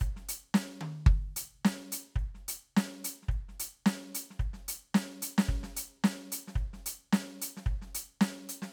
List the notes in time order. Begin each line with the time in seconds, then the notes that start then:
0.01 closed hi-hat, kick
0.17 snare
0.30 closed hi-hat
0.55 snare
0.82 high tom
1.07 kick
1.37 closed hi-hat
1.66 snare
1.93 closed hi-hat
2.16 kick, closed hi-hat
2.35 snare
2.49 closed hi-hat
2.77 snare
3.05 closed hi-hat
3.23 snare
3.29 kick, closed hi-hat
3.49 snare
3.61 closed hi-hat
3.87 snare
4.16 closed hi-hat
4.31 snare
4.40 kick, closed hi-hat
4.54 snare
4.69 closed hi-hat
4.95 snare
5.23 closed hi-hat
5.39 snare
5.49 kick
5.64 snare
5.77 closed hi-hat
6.05 snare
6.33 closed hi-hat
6.48 snare
6.56 kick, closed hi-hat
6.74 snare
6.87 closed hi-hat
7.13 snare
7.42 closed hi-hat
7.57 snare
7.67 kick, closed hi-hat
7.82 snare
7.96 closed hi-hat
8.22 snare
8.50 closed hi-hat
8.63 snare